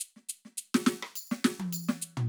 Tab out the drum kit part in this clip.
PC |x-x-x--xx---x-x-|
SD |-o-o-oo--oo--o--|
T1 |-----------o----|
FT |---------------o|